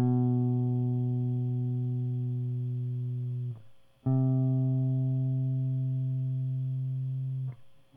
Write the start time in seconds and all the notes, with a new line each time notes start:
0.00 B2
4.08 C3